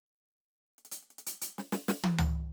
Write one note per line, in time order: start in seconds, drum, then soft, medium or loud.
0.78 closed hi-hat soft
0.85 closed hi-hat medium
0.91 closed hi-hat loud
1.03 closed hi-hat soft
1.10 closed hi-hat soft
1.18 closed hi-hat medium
1.27 closed hi-hat loud
1.42 closed hi-hat loud
1.58 snare medium
1.72 snare loud
1.88 snare loud
2.04 high tom loud
2.19 floor tom loud